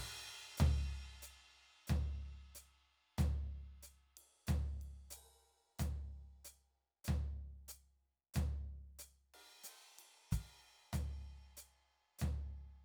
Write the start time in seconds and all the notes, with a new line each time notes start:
0.25 floor tom
0.58 floor tom, hi-hat pedal
0.68 floor tom
1.23 hi-hat pedal
1.88 floor tom, hi-hat pedal
2.56 hi-hat pedal
3.19 floor tom, hi-hat pedal
3.83 hi-hat pedal
4.18 ride
4.47 floor tom, hi-hat pedal
4.82 ride
5.11 hi-hat pedal, crash
5.79 floor tom, hi-hat pedal
6.45 hi-hat pedal
7.05 floor tom, hi-hat pedal
7.69 hi-hat pedal
8.35 floor tom, hi-hat pedal
8.99 hi-hat pedal
9.34 crash
9.64 hi-hat pedal, crash
9.99 ride
10.32 kick, hi-hat pedal, crash
10.93 floor tom, hi-hat pedal
11.58 hi-hat pedal
12.19 floor tom, hi-hat pedal